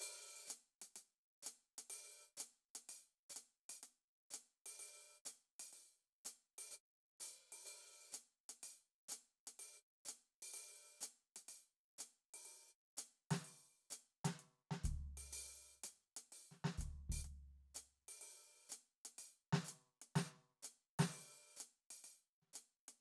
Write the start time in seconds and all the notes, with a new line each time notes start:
0.00 open hi-hat
0.47 closed hi-hat, hi-hat pedal
0.81 open hi-hat
0.96 open hi-hat
1.42 closed hi-hat, hi-hat pedal
1.78 closed hi-hat
1.90 open hi-hat
2.37 closed hi-hat, hi-hat pedal
2.75 open hi-hat
2.89 open hi-hat
3.29 hi-hat pedal
3.36 closed hi-hat
3.69 open hi-hat
3.83 open hi-hat
4.30 closed hi-hat, hi-hat pedal
4.66 open hi-hat
4.79 open hi-hat
5.25 closed hi-hat, hi-hat pedal
5.59 open hi-hat
5.73 open hi-hat
6.25 closed hi-hat, hi-hat pedal
6.58 open hi-hat
6.71 open hi-hat
7.20 open hi-hat, hi-hat pedal
7.52 open hi-hat
7.65 open hi-hat
8.12 closed hi-hat, hi-hat pedal
8.49 closed hi-hat
8.63 open hi-hat
9.08 closed hi-hat, hi-hat pedal
9.47 closed hi-hat
9.59 open hi-hat
10.05 closed hi-hat, hi-hat pedal
10.42 open hi-hat
10.53 open hi-hat
11.01 closed hi-hat, hi-hat pedal
11.36 open hi-hat
11.48 open hi-hat
11.98 closed hi-hat, hi-hat pedal
12.34 open hi-hat
12.45 open hi-hat
12.97 closed hi-hat, hi-hat pedal
13.30 snare, open hi-hat
13.44 open hi-hat
13.90 closed hi-hat, hi-hat pedal
14.24 snare, open hi-hat
14.39 open hi-hat
14.71 snare
14.83 kick, closed hi-hat, hi-hat pedal
15.17 open hi-hat
15.33 open hi-hat
15.83 hi-hat pedal, open hi-hat
16.16 closed hi-hat
16.32 open hi-hat
16.51 snare
16.64 snare
16.77 kick, closed hi-hat, hi-hat pedal
17.09 kick, open hi-hat
17.24 open hi-hat
17.74 closed hi-hat, hi-hat pedal
18.08 open hi-hat
18.21 open hi-hat
18.69 closed hi-hat, hi-hat pedal
19.05 closed hi-hat
19.18 open hi-hat
19.52 snare
19.64 closed hi-hat, hi-hat pedal
20.01 closed hi-hat
20.15 snare, open hi-hat
20.62 closed hi-hat, hi-hat pedal
20.99 snare, open hi-hat
21.12 open hi-hat
21.56 closed hi-hat, hi-hat pedal
21.90 open hi-hat
22.04 open hi-hat
22.41 snare
22.45 snare
22.53 closed hi-hat, hi-hat pedal
22.88 closed hi-hat